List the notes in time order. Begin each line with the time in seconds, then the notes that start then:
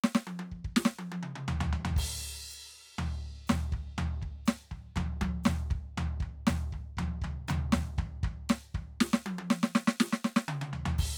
0.03 snare
0.15 snare
0.25 hi-hat pedal, high tom
0.39 high tom
0.51 kick
0.64 kick
0.76 snare
0.85 snare
0.99 high tom
1.12 high tom
1.23 mid tom
1.35 mid tom
1.48 floor tom
1.60 floor tom
1.73 floor tom
1.85 floor tom
1.96 kick, crash
2.50 hi-hat pedal
2.98 floor tom
3.47 snare, floor tom, hi-hat pedal
3.72 kick, floor tom
3.98 floor tom
4.22 kick, floor tom
4.45 snare, hi-hat pedal, floor tom
4.71 kick, floor tom
4.96 kick, floor tom, high tom
5.21 kick, floor tom, high tom
5.44 snare, floor tom, hi-hat pedal
5.70 kick, floor tom
5.97 floor tom
6.20 kick, floor tom
6.47 snare, floor tom, hi-hat pedal
6.72 kick, floor tom
6.97 kick, floor tom, high tom
7.21 kick, floor tom, mid tom
7.48 floor tom, hi-hat pedal, mid tom
7.72 snare, floor tom
7.98 kick, floor tom
8.23 kick, floor tom
8.49 snare, floor tom
8.74 kick, floor tom
9.00 snare
9.13 snare
9.26 high tom
9.38 high tom
9.50 snare
9.63 snare
9.68 hi-hat pedal
9.75 snare
9.87 snare
10.00 snare
10.12 snare
10.24 snare
10.36 snare
10.48 mid tom
10.61 mid tom
10.73 floor tom
10.85 floor tom
10.98 kick, crash